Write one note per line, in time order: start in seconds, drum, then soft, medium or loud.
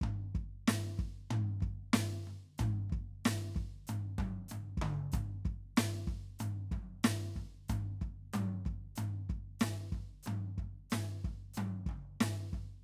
0.01 kick medium
0.01 floor tom loud
0.35 kick medium
0.35 floor tom soft
0.68 snare loud
0.68 floor tom loud
0.98 kick medium
0.98 floor tom soft
1.31 floor tom loud
1.60 kick medium
1.60 floor tom soft
1.93 snare loud
1.93 floor tom loud
2.27 floor tom soft
2.58 kick soft
2.58 floor tom loud
2.58 hi-hat pedal medium
2.90 kick medium
2.90 floor tom soft
3.25 snare loud
3.25 floor tom loud
3.25 hi-hat pedal medium
3.54 kick medium
3.54 floor tom soft
3.87 floor tom loud
3.87 hi-hat pedal medium
4.18 kick medium
4.18 floor tom medium
4.18 high tom medium
4.48 floor tom medium
4.48 hi-hat pedal medium
4.53 mid tom soft
4.77 kick medium
4.81 floor tom medium
4.81 mid tom loud
5.12 kick medium
5.12 floor tom medium
5.12 hi-hat pedal medium
5.45 kick medium
5.45 floor tom soft
5.76 snare loud
5.76 floor tom loud
5.76 hi-hat pedal medium
6.07 kick medium
6.07 floor tom soft
6.39 floor tom loud
6.39 hi-hat pedal medium
6.71 kick medium
6.71 floor tom soft
6.71 high tom medium
7.03 snare loud
7.03 floor tom loud
7.03 hi-hat pedal medium
7.36 kick soft
7.36 floor tom soft
7.68 kick soft
7.68 floor tom loud
7.68 hi-hat pedal medium
8.01 kick soft
8.01 floor tom soft
8.33 floor tom loud
8.33 hi-hat pedal medium
8.33 high tom loud
8.65 kick medium
8.65 floor tom soft
8.95 floor tom loud
8.95 hi-hat pedal medium
9.29 kick medium
9.29 floor tom soft
9.59 snare loud
9.59 floor tom medium
9.59 hi-hat pedal medium
9.92 kick soft
9.92 floor tom soft
10.23 hi-hat pedal medium
10.23 high tom medium
10.27 floor tom loud
10.58 kick soft
10.58 floor tom soft
10.90 snare medium
10.90 floor tom loud
10.90 hi-hat pedal medium
11.24 kick soft
11.24 floor tom soft
11.53 floor tom medium
11.53 hi-hat pedal medium
11.58 high tom medium
11.86 kick soft
11.86 mid tom soft
11.91 floor tom soft
12.20 snare loud
12.20 floor tom loud
12.20 hi-hat pedal medium
12.53 kick soft
12.53 floor tom soft